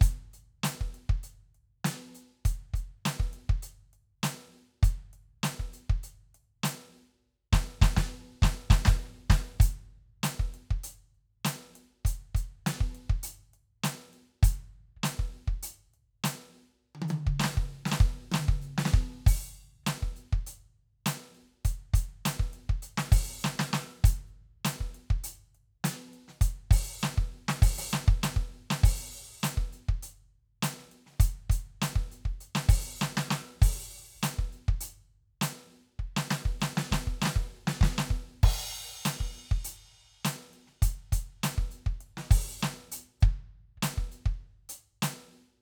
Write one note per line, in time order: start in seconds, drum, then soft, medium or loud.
0.01 closed hi-hat loud
0.01 kick loud
0.33 closed hi-hat soft
0.63 closed hi-hat loud
0.63 snare loud
0.81 kick medium
0.94 closed hi-hat soft
1.09 kick medium
1.23 closed hi-hat medium
1.54 closed hi-hat soft
1.84 closed hi-hat loud
1.84 snare loud
2.15 closed hi-hat soft
2.45 closed hi-hat medium
2.45 kick medium
2.74 closed hi-hat medium
2.74 kick medium
3.05 closed hi-hat loud
3.05 snare loud
3.20 kick medium
3.33 closed hi-hat soft
3.49 kick medium
3.62 closed hi-hat medium
3.93 closed hi-hat soft
4.23 closed hi-hat loud
4.23 snare loud
4.83 closed hi-hat medium
4.83 kick loud
5.13 closed hi-hat soft
5.43 closed hi-hat loud
5.43 snare loud
5.59 kick soft
5.73 closed hi-hat soft
5.90 kick medium
6.03 closed hi-hat medium
6.34 closed hi-hat soft
6.63 closed hi-hat loud
6.63 snare loud
7.53 kick loud
7.53 snare loud
7.82 kick loud
7.82 snare loud
7.96 kick medium
7.96 snare loud
8.42 kick loud
8.42 snare loud
8.70 kick loud
8.70 snare loud
8.85 kick loud
8.85 snare loud
9.06 cross-stick soft
9.30 kick loud
9.30 snare loud
9.60 closed hi-hat loud
9.60 kick loud
10.23 closed hi-hat loud
10.23 snare loud
10.39 kick medium
10.54 closed hi-hat soft
10.71 kick medium
10.84 closed hi-hat loud
11.14 closed hi-hat soft
11.45 closed hi-hat loud
11.45 snare loud
11.75 closed hi-hat soft
12.05 closed hi-hat loud
12.05 kick medium
12.35 closed hi-hat medium
12.35 kick medium
12.66 closed hi-hat loud
12.66 snare loud
12.80 kick medium
12.95 closed hi-hat soft
13.10 kick medium
13.23 closed hi-hat loud
13.53 closed hi-hat soft
13.84 closed hi-hat loud
13.84 snare loud
14.13 closed hi-hat soft
14.43 closed hi-hat loud
14.43 kick loud
14.96 kick soft
15.03 closed hi-hat loud
15.03 snare loud
15.19 kick medium
15.47 kick medium
15.52 crash soft
15.63 closed hi-hat loud
15.94 closed hi-hat soft
16.24 closed hi-hat loud
16.24 snare loud
16.95 high tom medium
17.02 high tom loud
17.08 hi-hat pedal medium
17.08 high tom loud
17.27 kick medium
17.39 snare loud
17.39 hi-hat pedal soft
17.44 snare loud
17.57 kick medium
17.85 snare loud
17.91 snare loud
18.00 kick loud
18.32 snare loud
18.32 hi-hat pedal medium
18.32 high tom loud
18.48 kick loud
18.62 hi-hat pedal soft
18.78 snare loud
18.85 snare loud
18.93 kick loud
19.26 open hi-hat loud
19.26 kick loud
19.83 open hi-hat loud
19.83 kick soft
19.83 snare loud
19.83 hi-hat pedal medium
20.02 kick medium
20.16 closed hi-hat soft
20.32 kick medium
20.32 crash soft
20.46 closed hi-hat medium
21.06 closed hi-hat loud
21.06 snare loud
21.35 closed hi-hat soft
21.42 kick soft
21.65 closed hi-hat loud
21.65 kick medium
21.94 closed hi-hat loud
21.94 kick loud
22.25 closed hi-hat loud
22.25 snare loud
22.39 kick medium
22.53 closed hi-hat soft
22.69 kick medium
22.82 closed hi-hat medium
22.97 snare loud
23.12 open hi-hat loud
23.12 kick loud
23.42 snare loud
23.42 hi-hat pedal medium
23.59 snare loud
23.73 snare loud
24.04 closed hi-hat loud
24.04 kick loud
24.26 hi-hat pedal soft
24.65 closed hi-hat loud
24.65 snare loud
24.80 kick medium
24.94 closed hi-hat soft
25.10 kick medium
25.10 crash soft
25.24 closed hi-hat loud
25.55 closed hi-hat soft
25.84 closed hi-hat loud
25.84 snare loud
26.13 closed hi-hat soft
26.28 snare soft
26.41 closed hi-hat loud
26.41 kick loud
26.71 open hi-hat loud
26.71 kick loud
27.02 snare loud
27.02 hi-hat pedal medium
27.18 kick medium
27.48 snare loud
27.62 open hi-hat loud
27.62 kick loud
27.77 open hi-hat loud
27.77 snare soft
27.91 snare loud
27.91 hi-hat pedal soft
28.08 kick loud
28.23 open hi-hat loud
28.23 snare loud
28.23 hi-hat pedal soft
28.36 kick medium
28.70 snare loud
28.83 open hi-hat loud
28.83 kick loud
29.32 kick soft
29.43 closed hi-hat loud
29.43 snare loud
29.43 hi-hat pedal medium
29.57 kick medium
29.73 closed hi-hat soft
29.89 kick medium
30.03 closed hi-hat medium
30.62 closed hi-hat loud
30.62 snare loud
30.79 snare soft
30.91 closed hi-hat soft
31.06 snare soft
31.11 snare soft
31.13 snare soft
31.20 closed hi-hat loud
31.20 kick loud
31.50 closed hi-hat loud
31.50 kick loud
31.82 closed hi-hat loud
31.82 snare loud
31.96 kick medium
32.12 closed hi-hat soft
32.25 kick medium
32.25 crash soft
32.30 ride soft
32.40 closed hi-hat medium
32.55 snare loud
32.69 open hi-hat loud
32.69 kick loud
33.01 snare loud
33.01 hi-hat pedal medium
33.17 snare loud
33.30 snare loud
33.62 open hi-hat loud
33.62 kick loud
34.16 kick soft
34.22 closed hi-hat loud
34.22 snare loud
34.22 hi-hat pedal soft
34.38 kick medium
34.52 closed hi-hat soft
34.68 kick medium
34.81 closed hi-hat loud
35.41 closed hi-hat loud
35.41 snare loud
35.99 kick medium
36.04 ride soft
36.16 snare loud
36.30 snare loud
36.30 hi-hat pedal medium
36.45 kick medium
36.61 snare loud
36.61 hi-hat pedal medium
36.77 snare loud
36.91 kick medium
36.91 snare loud
37.07 kick medium
37.22 snare loud
37.22 hi-hat pedal medium
37.25 snare loud
37.36 kick medium
37.48 hi-hat pedal soft
37.67 snare loud
37.81 kick loud
37.81 snare loud
37.98 snare loud
38.10 kick medium
38.10 snare soft
38.40 kick soft
38.43 kick loud
38.43 crash loud
39.04 closed hi-hat loud
39.04 kick soft
39.04 snare loud
39.20 kick medium
39.34 closed hi-hat soft
39.51 kick medium
39.65 closed hi-hat loud
40.25 closed hi-hat loud
40.25 snare loud
40.53 closed hi-hat soft
40.67 snare soft
40.82 closed hi-hat loud
40.82 kick loud
41.12 closed hi-hat loud
41.12 kick medium
41.43 closed hi-hat loud
41.43 snare loud
41.58 kick medium
41.71 closed hi-hat soft
41.86 kick medium
41.86 snare soft
41.91 ride soft
42.01 closed hi-hat soft
42.17 snare medium
42.31 open hi-hat loud
42.31 kick loud
42.61 snare loud
42.61 hi-hat pedal medium
42.92 closed hi-hat loud
43.20 kick loud
43.20 hi-hat pedal soft
43.77 kick soft
43.82 closed hi-hat loud
43.82 snare loud
43.98 kick medium
44.12 closed hi-hat soft
44.26 kick medium
44.26 crash soft
44.69 closed hi-hat loud
45.02 closed hi-hat loud
45.02 snare loud